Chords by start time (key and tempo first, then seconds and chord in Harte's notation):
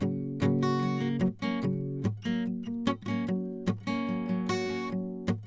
F# major, 147 BPM
0.00 F#:maj/5